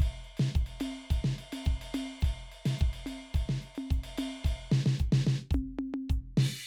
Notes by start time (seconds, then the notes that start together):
0.01 kick, hi-hat pedal, ride
0.26 ride
0.39 snare, ride
0.57 kick, hi-hat pedal
0.68 ride
0.82 high tom, ride
1.13 kick, hi-hat pedal, ride
1.27 snare
1.41 ride
1.55 high tom, ride
1.67 kick, hi-hat pedal
1.84 ride
1.96 high tom, ride
2.23 kick, hi-hat pedal, ride
2.54 ride
2.68 snare, ride
2.81 kick, hi-hat pedal
2.95 ride
3.08 high tom, ride
3.36 kick, hi-hat pedal, ride
3.51 snare
3.64 ride
3.77 high tom, ride
3.93 kick, hi-hat pedal
4.06 ride
4.20 high tom, ride
4.47 kick, hi-hat pedal, ride
4.74 snare
4.88 snare
5.01 kick, hi-hat pedal
5.15 snare
5.29 snare
5.53 kick, hi-hat pedal, high tom
5.81 high tom
5.96 high tom
6.12 kick, hi-hat pedal
6.40 snare, crash